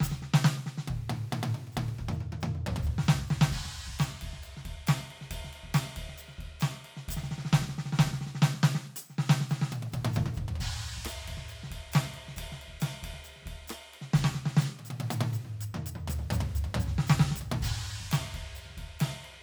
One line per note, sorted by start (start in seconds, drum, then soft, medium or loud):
0.01 kick soft
0.01 snare loud
0.01 percussion loud
0.10 kick soft
0.10 snare medium
0.23 snare medium
0.34 snare loud
0.45 snare loud
0.57 snare soft
0.67 snare medium
0.78 snare medium
0.88 kick soft
0.88 high tom loud
0.98 kick soft
1.10 high tom loud
1.33 high tom loud
1.44 high tom loud
1.55 high tom medium
1.67 high tom soft
1.73 percussion soft
1.77 kick soft
1.77 high tom loud
1.89 high tom medium
1.99 kick soft
1.99 mid tom medium
2.13 percussion soft
2.21 mid tom soft
2.33 mid tom medium
2.41 mid tom loud
2.41 percussion soft
2.55 mid tom medium
2.67 floor tom loud
2.77 kick soft
2.77 floor tom loud
2.83 percussion soft
2.87 floor tom medium
2.99 snare medium
3.04 percussion soft
3.09 snare loud
3.20 snare medium
3.28 snare medium
3.28 percussion soft
3.42 snare loud
3.52 kick medium
3.52 percussion soft
3.52 crash loud
3.60 kick soft
3.65 kick soft
3.65 snare soft
3.88 kick soft
3.93 kick soft
4.00 snare medium
4.00 ride medium
4.00 percussion medium
4.22 kick soft
4.22 ride medium
4.30 kick soft
4.30 snare soft
4.43 ride medium
4.43 percussion soft
4.57 snare soft
4.66 kick soft
4.66 ride medium
4.72 kick soft
4.87 snare loud
4.87 ride loud
4.87 percussion medium
5.11 ride soft
5.22 snare soft
5.31 kick soft
5.31 ride loud
5.31 percussion medium
5.38 kick soft
5.42 kick soft
5.42 snare soft
5.54 ride medium
5.64 kick soft
5.70 kick soft
5.75 snare loud
5.75 ride loud
5.75 percussion medium
5.97 kick soft
5.97 ride medium
6.05 kick soft
6.09 snare soft
6.18 ride soft
6.18 percussion medium
6.29 snare soft
6.39 kick soft
6.39 ride soft
6.45 kick soft
6.61 snare medium
6.61 ride medium
6.61 percussion medium
6.85 ride medium
6.97 snare soft
7.09 kick medium
7.09 ride medium
7.09 percussion loud
7.16 kick soft
7.16 snare medium
7.24 snare medium
7.32 snare medium
7.39 snare medium
7.46 snare medium
7.53 kick soft
7.53 snare loud
7.63 snare medium
7.70 snare medium
7.79 snare medium
7.86 snare medium
7.93 snare medium
8.00 kick soft
8.00 snare loud
8.08 snare medium
8.14 snare medium
8.22 snare medium
8.27 snare medium
8.35 snare medium
8.43 snare loud
8.55 snare soft
8.64 snare loud
8.75 snare medium
8.86 cross-stick soft
8.97 percussion loud
9.10 snare soft
9.19 snare medium
9.25 percussion soft
9.30 snare loud
9.41 snare medium
9.50 snare medium
9.50 percussion medium
9.62 snare medium
9.70 kick soft
9.70 high tom loud
9.70 percussion soft
9.83 high tom medium
9.93 kick soft
9.93 high tom loud
9.93 percussion soft
9.99 kick soft
10.05 high tom loud
10.14 kick soft
10.14 mid tom loud
10.14 percussion medium
10.22 kick soft
10.26 mid tom medium
10.35 kick soft
10.35 floor tom medium
10.35 percussion soft
10.49 floor tom medium
10.56 floor tom medium
10.61 kick medium
10.61 percussion soft
10.61 crash loud
10.74 kick soft
10.98 kick soft
11.06 cross-stick medium
11.06 ride loud
11.06 percussion medium
11.28 kick soft
11.28 ride medium
11.34 kick soft
11.34 snare soft
11.49 ride medium
11.49 percussion soft
11.64 snare soft
11.71 kick soft
11.71 ride medium
11.77 kick soft
11.93 snare loud
11.93 ride loud
11.93 percussion medium
12.15 ride medium
12.29 snare soft
12.37 kick soft
12.37 ride loud
12.37 percussion medium
12.44 kick soft
12.53 snare soft
12.62 ride medium
12.69 kick soft
12.74 kick soft
12.81 snare medium
12.81 ride loud
12.81 percussion medium
13.04 kick soft
13.04 ride medium
13.10 kick soft
13.10 snare soft
13.25 ride medium
13.25 percussion medium
13.37 snare soft
13.43 kick soft
13.43 snare soft
13.48 ride medium
13.53 kick soft
13.68 cross-stick medium
13.68 ride loud
13.68 percussion medium
13.94 ride medium
14.02 snare soft
14.14 kick soft
14.14 snare loud
14.14 percussion medium
14.22 kick soft
14.22 snare loud
14.35 snare medium
14.46 snare medium
14.57 snare loud
14.57 percussion medium
14.70 cross-stick soft
14.80 high tom medium
14.86 percussion medium
14.91 high tom medium
15.01 high tom loud
15.11 high tom loud
15.11 percussion loud
15.21 high tom loud
15.34 high tom soft
15.34 percussion medium
15.45 mid tom medium
15.60 mid tom soft
15.60 percussion loud
15.75 mid tom loud
15.87 percussion loud
15.96 mid tom medium
16.08 floor tom loud
16.08 percussion loud
16.20 mid tom medium
16.31 percussion medium
16.31 floor tom loud
16.41 floor tom loud
16.52 floor tom soft
16.56 percussion medium
16.65 floor tom medium
16.75 floor tom loud
16.81 percussion medium
16.88 snare soft
16.99 snare loud
17.08 snare loud
17.08 percussion medium
17.20 snare loud
17.32 snare medium
17.36 kick soft
17.36 percussion loud
17.42 high tom medium
17.52 high tom loud
17.62 kick medium
17.62 percussion loud
17.62 crash loud
17.78 kick soft
17.85 percussion soft
17.90 kick soft
18.01 kick soft
18.07 kick soft
18.12 snare loud
18.12 ride loud
18.12 percussion medium
18.35 kick soft
18.35 ride medium
18.41 kick soft
18.53 snare soft
18.53 ride medium
18.53 percussion medium
18.66 snare soft
18.71 snare soft
18.78 kick soft
18.78 ride medium
18.84 kick soft
19.00 snare loud
19.00 ride loud
19.00 percussion medium
19.25 ride soft